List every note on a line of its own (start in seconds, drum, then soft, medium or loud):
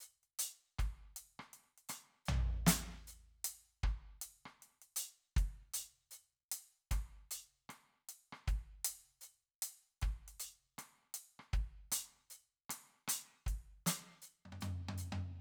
0.01 closed hi-hat soft
0.01 hi-hat pedal medium
0.24 closed hi-hat soft
0.40 closed hi-hat loud
0.79 kick medium
0.79 cross-stick medium
0.79 closed hi-hat soft
1.17 closed hi-hat medium
1.40 cross-stick medium
1.54 closed hi-hat soft
1.78 closed hi-hat soft
1.90 open hi-hat medium
1.90 cross-stick medium
2.26 floor tom loud
2.26 hi-hat pedal soft
2.67 closed hi-hat loud
2.67 snare loud
3.08 hi-hat pedal medium
3.45 closed hi-hat loud
3.84 kick medium
3.84 cross-stick medium
4.22 closed hi-hat medium
4.46 cross-stick medium
4.63 closed hi-hat soft
4.82 closed hi-hat soft
4.97 closed hi-hat loud
5.37 kick medium
5.37 closed hi-hat soft
5.74 open hi-hat medium
6.12 closed hi-hat soft
6.12 hi-hat pedal medium
6.52 closed hi-hat medium
6.92 kick medium
6.92 cross-stick medium
6.92 closed hi-hat medium
7.32 closed hi-hat medium
7.70 cross-stick medium
7.70 closed hi-hat soft
8.09 closed hi-hat medium
8.33 cross-stick medium
8.48 kick medium
8.48 closed hi-hat soft
8.85 open hi-hat loud
9.22 closed hi-hat soft
9.22 hi-hat pedal medium
9.63 closed hi-hat loud
10.02 kick medium
10.02 cross-stick soft
10.02 closed hi-hat soft
10.29 closed hi-hat soft
10.40 closed hi-hat medium
10.79 cross-stick medium
10.79 closed hi-hat medium
11.15 closed hi-hat medium
11.40 cross-stick soft
11.54 kick medium
11.54 closed hi-hat soft
11.92 open hi-hat loud
11.92 cross-stick medium
12.31 closed hi-hat soft
12.31 hi-hat pedal medium
12.70 cross-stick medium
12.70 closed hi-hat medium
13.08 closed hi-hat loud
13.08 cross-stick medium
13.47 kick medium
13.47 closed hi-hat soft
13.87 open hi-hat loud
13.87 snare medium
14.22 hi-hat pedal medium
14.46 high tom soft
14.53 high tom medium
14.61 hi-hat pedal soft
14.61 high tom medium
14.89 high tom medium
14.98 hi-hat pedal medium
15.13 high tom medium